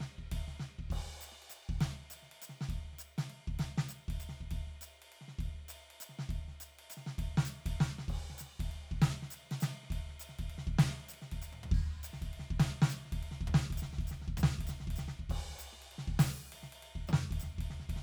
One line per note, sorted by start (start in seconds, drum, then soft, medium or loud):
0.01 snare soft
0.19 kick soft
0.32 kick medium
0.32 ride medium
0.48 snare soft
0.60 snare soft
0.79 kick soft
0.91 kick medium
0.91 crash medium
1.08 snare soft
1.22 ride soft
1.22 percussion medium
1.32 cross-stick soft
1.43 ride soft
1.50 ride soft
1.50 percussion medium
1.70 kick medium
1.81 snare medium
1.81 ride medium
2.11 ride soft
2.11 percussion medium
2.23 snare soft
2.32 ride soft
2.42 ride soft
2.42 percussion medium
2.50 snare soft
2.61 snare medium
2.69 kick medium
2.69 ride soft
2.93 snare soft
2.99 ride soft
2.99 percussion medium
3.18 snare medium
3.18 ride soft
3.30 ride soft
3.48 kick medium
3.60 snare medium
3.60 ride medium
3.78 snare medium
3.89 ride soft
3.89 percussion medium
4.09 kick medium
4.09 ride medium
4.21 ride soft
4.21 percussion medium
4.29 snare soft
4.41 kick soft
4.51 kick medium
4.51 ride medium
4.67 snare soft
4.82 ride soft
4.82 percussion medium
5.02 ride soft
5.21 snare soft
5.29 snare soft
5.39 kick medium
5.39 ride soft
5.69 ride medium
5.69 percussion medium
5.91 ride soft
6.01 ride soft
6.01 percussion medium
6.10 snare soft
6.19 snare soft
6.30 kick medium
6.30 ride soft
6.48 snare soft
6.61 ride soft
6.61 percussion medium
6.79 ride soft
6.91 ride soft
6.91 percussion medium
6.97 snare soft
7.07 snare soft
7.19 kick medium
7.19 ride medium
7.38 snare medium
7.46 percussion medium
7.50 ride soft
7.66 kick medium
7.66 ride medium
7.81 snare medium
7.99 snare soft
8.09 kick medium
8.09 crash medium
8.30 snare soft
8.39 snare soft
8.39 percussion medium
8.60 kick medium
8.60 ride medium
8.72 ride soft
8.92 kick medium
9.02 snare loud
9.02 ride medium
9.23 snare soft
9.31 ride soft
9.31 percussion medium
9.52 snare medium
9.52 ride soft
9.61 snare medium
9.61 ride medium
9.61 percussion medium
9.84 snare soft
9.91 kick medium
9.91 ride medium
10.09 snare soft
10.20 ride medium
10.20 percussion medium
10.29 snare soft
10.39 kick soft
10.39 ride soft
10.50 ride soft
10.59 snare soft
10.68 kick medium
10.79 snare loud
10.79 ride medium
11.09 percussion medium
11.14 ride soft
11.22 snare soft
11.32 kick soft
11.32 ride soft
11.42 ride soft
11.42 percussion medium
11.53 high tom soft
11.64 floor tom medium
11.72 kick medium
11.72 crash soft
12.04 ride medium
12.04 percussion medium
12.14 snare soft
12.22 kick soft
12.22 ride soft
12.34 ride soft
12.40 snare soft
12.51 kick medium
12.60 snare loud
12.60 ride medium
12.82 snare loud
12.90 percussion medium
12.94 ride soft
13.06 snare soft
13.13 kick medium
13.13 ride medium
13.23 ride soft
13.32 snare soft
13.41 kick medium
13.48 floor tom medium
13.55 snare loud
13.71 kick medium
13.71 ride medium
13.78 percussion medium
13.83 snare soft
13.93 snare soft
13.99 kick medium
13.99 ride bell soft
14.08 snare soft
14.08 percussion medium
14.22 snare soft
14.28 kick medium
14.38 floor tom medium
14.38 percussion medium
14.44 snare loud
14.59 kick soft
14.59 ride medium
14.67 snare soft
14.67 percussion medium
14.81 snare soft
14.88 kick medium
14.88 ride medium
14.96 snare soft
14.96 percussion medium
15.09 snare soft
15.20 kick soft
15.30 kick medium
15.30 crash medium
15.50 snare soft
15.59 percussion medium
15.64 ride soft
15.73 cross-stick soft
15.82 ride soft
15.92 ride soft
15.99 snare soft
16.08 kick medium
16.20 snare loud
16.20 percussion medium
16.53 ride medium
16.63 snare soft
16.73 ride medium
16.96 kick soft
17.08 mid tom medium
17.08 percussion soft
17.13 snare medium
17.31 kick medium
17.31 ride medium
17.40 snare soft
17.40 percussion medium
17.50 snare soft
17.59 kick medium
17.59 ride medium
17.71 snare soft
17.80 snare soft
17.90 kick soft
17.90 ride medium
17.97 snare soft